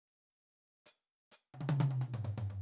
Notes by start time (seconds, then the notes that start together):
0.86 hi-hat pedal
1.32 hi-hat pedal
1.54 high tom
1.61 high tom
1.69 high tom
1.80 high tom
1.91 high tom
2.01 high tom
2.14 mid tom
2.25 mid tom
2.38 mid tom
2.50 mid tom